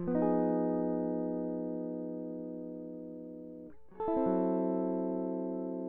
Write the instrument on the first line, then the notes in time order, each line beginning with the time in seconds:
electric guitar
0.00 F3
0.07 B3
0.15 D#4
0.23 G#4
4.01 A4
4.09 E4
4.17 C4
4.28 F#3